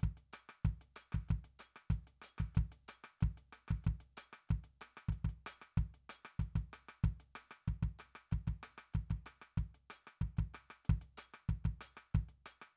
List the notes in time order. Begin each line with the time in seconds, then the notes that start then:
0.01 kick, closed hi-hat
0.18 closed hi-hat
0.34 closed hi-hat, cross-stick
0.50 cross-stick
0.66 kick, closed hi-hat
0.82 closed hi-hat
0.97 closed hi-hat, cross-stick
1.13 kick, cross-stick
1.30 kick, closed hi-hat
1.45 closed hi-hat
1.60 closed hi-hat, cross-stick
1.77 cross-stick
1.91 kick, closed hi-hat
2.08 closed hi-hat
2.23 closed hi-hat, cross-stick
2.39 kick, cross-stick
2.56 kick, closed hi-hat
2.73 closed hi-hat
2.89 closed hi-hat, cross-stick
3.05 cross-stick
3.22 kick, closed hi-hat
3.38 closed hi-hat
3.53 cross-stick, closed hi-hat
3.69 kick, cross-stick
3.85 kick, closed hi-hat
4.01 closed hi-hat
4.18 closed hi-hat, cross-stick
4.34 cross-stick
4.50 kick, closed hi-hat
4.65 closed hi-hat
4.82 cross-stick, closed hi-hat
4.98 cross-stick
5.09 kick, closed hi-hat
5.25 kick
5.30 closed hi-hat
5.47 closed hi-hat, cross-stick
5.63 cross-stick
5.78 kick, closed hi-hat
5.95 closed hi-hat
6.10 closed hi-hat, cross-stick
6.26 cross-stick
6.40 kick, closed hi-hat
6.56 kick, closed hi-hat
6.74 cross-stick, closed hi-hat
6.89 cross-stick
7.05 kick, closed hi-hat
7.21 closed hi-hat
7.36 cross-stick, closed hi-hat
7.52 cross-stick
7.68 kick, closed hi-hat
7.84 kick, closed hi-hat
8.00 cross-stick, closed hi-hat
8.16 cross-stick
8.32 kick, closed hi-hat
8.48 kick, closed hi-hat
8.64 cross-stick, closed hi-hat
8.79 cross-stick
8.95 kick, closed hi-hat
9.11 kick, closed hi-hat
9.27 cross-stick, closed hi-hat
9.42 cross-stick
9.58 kick, closed hi-hat
9.75 closed hi-hat
9.91 closed hi-hat, cross-stick
10.08 cross-stick
10.22 kick, closed hi-hat
10.38 kick, closed hi-hat
10.55 cross-stick, closed hi-hat
10.71 cross-stick
10.86 closed hi-hat
10.90 kick
11.02 closed hi-hat
11.18 closed hi-hat, cross-stick
11.35 cross-stick
11.50 kick, closed hi-hat
11.65 kick, closed hi-hat
11.82 closed hi-hat, cross-stick
11.98 cross-stick
12.15 kick, closed hi-hat
12.30 closed hi-hat
12.47 closed hi-hat, cross-stick
12.63 cross-stick